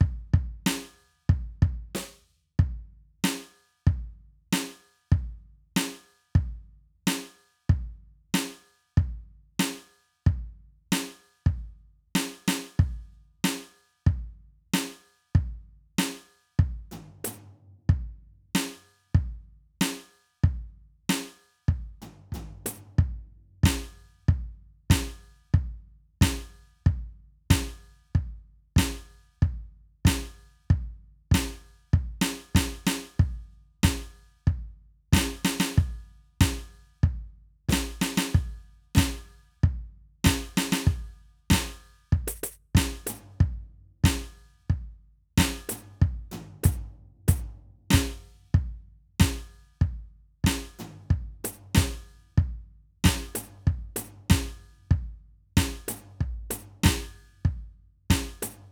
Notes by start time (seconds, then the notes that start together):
0.01 kick
0.34 kick
0.66 snare
1.30 kick
1.62 kick
1.95 snare
2.59 kick
3.24 snare
3.87 kick
4.53 snare
5.12 kick
5.77 snare
6.35 kick
7.07 snare
7.70 kick
8.34 snare
8.97 kick
9.60 snare
10.27 kick
10.92 snare
11.46 kick
12.15 snare
12.48 snare
12.79 kick
13.44 snare
14.07 kick
14.74 snare
15.35 kick
15.99 snare
16.59 kick
16.92 floor tom, high tom
17.25 floor tom, high tom
17.89 kick
18.55 snare
19.15 kick
19.81 snare
20.44 kick
21.10 snare
21.68 kick
21.94 kick
22.02 floor tom, high tom
22.32 kick, floor tom, high tom
22.66 floor tom, high tom
22.99 kick
23.64 kick, snare
24.29 kick
24.90 kick, snare
25.54 kick
26.22 kick, snare
26.86 kick
27.51 kick, snare
28.15 kick
28.76 kick, snare
29.42 kick
30.05 kick, snare
30.70 kick
31.32 kick, snare
31.94 kick
32.22 snare
32.55 kick, snare
32.87 snare
33.20 kick
33.84 kick, snare
34.47 kick
35.13 kick, snare
35.17 snare
35.45 snare
35.60 snare
35.78 kick
36.41 kick, snare
37.03 kick
37.69 kick, snare
37.73 snare
38.02 snare
38.18 snare
38.35 kick
38.95 kick, snare
38.98 snare
39.64 kick
40.25 kick, snare
40.26 snare
40.57 snare
40.72 snare
40.87 kick
41.50 kick, snare
41.53 snare
42.13 kick
42.28 high tom
42.43 high tom
42.75 kick, snare
43.07 floor tom, high tom
43.41 kick
44.04 kick, snare
44.70 kick
45.38 kick, snare
45.40 snare
45.69 floor tom, high tom
46.02 kick
46.32 floor tom, high tom
46.64 kick, floor tom, high tom
47.28 kick, floor tom, high tom
47.91 snare
47.93 kick, snare
48.55 kick
49.20 kick, snare
49.82 kick
50.44 kick, snare
50.79 floor tom, high tom
51.11 kick
51.44 floor tom, high tom
51.75 snare
51.77 kick, snare
52.38 kick
53.04 kick, snare
53.06 snare
53.35 floor tom, high tom
53.67 kick
53.96 floor tom, high tom
54.30 kick, snare
54.91 kick
55.57 kick, snare
55.88 floor tom, high tom
56.21 kick
56.51 floor tom, high tom
56.84 kick, snare
56.86 snare
57.45 kick
58.10 kick, snare
58.43 floor tom, high tom